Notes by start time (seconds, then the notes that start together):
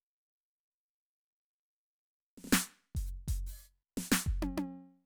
2.37 snare
2.44 snare
2.47 snare
2.52 snare
2.95 open hi-hat, kick
3.05 hi-hat pedal
3.28 open hi-hat, kick
3.46 hi-hat pedal
3.97 snare
4.12 snare
4.26 kick
4.42 closed hi-hat, high tom
4.57 closed hi-hat, high tom